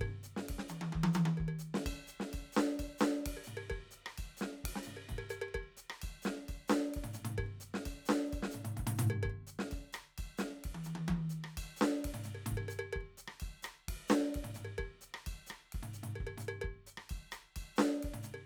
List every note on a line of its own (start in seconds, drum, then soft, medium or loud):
0.01 kick soft
0.01 percussion loud
0.11 percussion soft
0.23 hi-hat pedal medium
0.37 snare medium
0.49 kick soft
0.49 ride medium
0.58 snare medium
0.68 hi-hat pedal medium
0.68 high tom medium
0.81 high tom medium
0.92 kick soft
0.92 high tom medium
1.04 high tom loud
1.13 hi-hat pedal medium
1.13 high tom loud
1.25 high tom medium
1.37 kick soft
1.37 percussion medium
1.48 percussion medium
1.59 hi-hat pedal medium
1.74 snare loud
1.86 kick soft
1.86 ride bell loud
1.95 kick soft
2.07 hi-hat pedal medium
2.20 snare medium
2.33 kick soft
2.33 ride bell medium
2.52 hi-hat pedal medium
2.57 snare loud
2.79 kick soft
2.79 ride bell medium
2.98 snare loud
2.98 hi-hat pedal medium
3.26 kick soft
3.26 ride loud
3.37 percussion medium
3.44 hi-hat pedal medium
3.44 mid tom medium
3.57 percussion loud
3.70 kick soft
3.70 percussion loud
3.91 hi-hat pedal medium
4.06 cross-stick medium
4.18 kick soft
4.18 ride bell medium
4.37 hi-hat pedal medium
4.41 snare medium
4.64 kick soft
4.64 ride loud
4.76 snare medium
4.83 hi-hat pedal medium
4.87 mid tom soft
4.97 percussion medium
5.09 kick soft
5.09 mid tom medium
5.18 percussion loud
5.30 hi-hat pedal medium
5.30 percussion loud
5.42 percussion loud
5.48 percussion soft
5.54 kick soft
5.54 percussion loud
5.63 percussion soft
5.77 hi-hat pedal medium
5.90 cross-stick medium
6.02 kick soft
6.02 ride bell medium
6.08 kick soft
6.22 snare medium
6.22 hi-hat pedal medium
6.48 kick soft
6.48 ride bell medium
6.68 snare loud
6.68 hi-hat pedal medium
6.94 kick soft
6.94 ride medium
7.04 mid tom medium
7.13 hi-hat pedal medium
7.13 mid tom medium
7.25 mid tom medium
7.38 kick soft
7.38 percussion loud
7.46 percussion soft
7.60 hi-hat pedal medium
7.74 snare medium
7.85 kick soft
7.85 ride bell medium
8.05 snare medium
8.05 hi-hat pedal medium
8.26 hi-hat pedal soft
8.33 kick soft
8.33 ride bell medium
8.43 snare medium
8.51 hi-hat pedal medium
8.51 mid tom medium
8.65 mid tom medium
8.77 kick soft
8.77 mid tom medium
8.85 kick soft
8.98 hi-hat pedal medium
8.98 mid tom loud
9.10 percussion loud
9.23 kick soft
9.23 percussion loud
9.30 kick soft
9.30 percussion soft
9.47 hi-hat pedal medium
9.59 snare medium
9.71 kick soft
9.71 ride bell medium
9.93 cross-stick medium
9.93 hi-hat pedal medium
10.18 kick soft
10.18 ride bell medium
10.38 snare medium
10.38 hi-hat pedal medium
10.64 kick soft
10.64 ride medium
10.71 kick soft
10.71 high tom medium
10.84 hi-hat pedal medium
10.84 high tom medium
10.95 high tom medium
11.08 kick soft
11.08 high tom loud
11.29 hi-hat pedal medium
11.44 cross-stick medium
11.57 kick soft
11.57 ride bell loud
11.76 hi-hat pedal medium
11.81 snare loud
12.04 kick soft
12.04 ride medium
12.14 mid tom medium
12.24 hi-hat pedal medium
12.24 mid tom soft
12.35 percussion medium
12.46 mid tom medium
12.52 kick soft
12.57 kick soft
12.57 percussion loud
12.68 hi-hat pedal medium
12.68 percussion loud
12.79 percussion loud
12.93 kick soft
12.93 percussion loud
13.01 kick soft
13.01 percussion soft
13.17 hi-hat pedal medium
13.28 cross-stick medium
13.40 kick soft
13.40 ride bell medium
13.62 cross-stick medium
13.62 hi-hat pedal medium
13.88 kick soft
13.88 ride loud
14.08 snare loud
14.08 hi-hat pedal medium
14.34 kick soft
14.34 ride medium
14.41 kick soft
14.41 mid tom medium
14.54 hi-hat pedal medium
14.54 mid tom medium
14.65 percussion medium
14.78 kick soft
14.78 percussion loud
15.01 hi-hat pedal medium
15.14 cross-stick medium
15.26 kick soft
15.26 ride bell medium
15.33 kick soft
15.47 cross-stick medium
15.47 hi-hat pedal medium
15.72 kick soft
15.72 ride medium
15.83 mid tom medium
15.87 ride soft
15.93 hi-hat pedal medium
16.03 mid tom medium
16.15 percussion medium
16.20 kick soft
16.25 kick soft
16.25 percussion loud
16.38 hi-hat pedal medium
16.38 mid tom medium
16.48 percussion loud
16.61 kick soft
16.61 percussion loud
16.87 hi-hat pedal medium
16.97 cross-stick medium
17.09 kick soft
17.09 ride bell medium
17.32 cross-stick medium
17.32 hi-hat pedal medium
17.56 kick soft
17.56 ride bell medium
17.62 kick soft
17.76 snare loud
17.76 hi-hat pedal medium
18.03 kick soft
18.03 ride medium
18.14 mid tom medium
18.23 hi-hat pedal medium
18.23 mid tom soft
18.34 percussion medium